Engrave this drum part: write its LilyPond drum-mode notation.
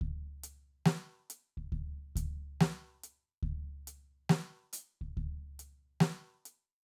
\new DrumStaff \drummode { \time 4/4 \tempo 4 = 70 bd8 hh8 \tuplet 3/2 { sn16 r16 r16 hh16 r16 bd16 } <bd cymc>8 <bd hh>8 sn8 hh8 | bd8 hh8 \tuplet 3/2 { sn16 r16 r16 hh16 r16 bd16 } bd8 hh8 sn8 hh8 | }